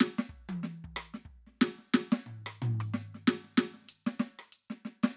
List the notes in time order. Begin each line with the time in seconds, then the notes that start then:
0.01 snare
0.19 snare
0.30 kick
0.49 high tom
0.64 snare
0.84 kick
0.97 high tom
1.14 snare
1.25 kick
1.47 snare
1.52 snare
1.56 snare
1.59 snare
1.62 snare
1.79 snare
1.83 snare
1.86 snare
1.93 snare
2.12 snare
2.26 floor tom
2.47 high tom
2.62 floor tom
2.81 cross-stick
2.94 snare
3.15 snare
3.28 snare
3.44 snare
3.48 snare
3.52 snare
3.55 snare
3.58 snare
3.74 snare
3.78 snare
3.82 snare
3.85 snare, percussion
4.07 snare
4.20 snare
4.39 high tom
4.53 percussion
4.70 snare
4.85 snare
5.03 snare, percussion
5.12 percussion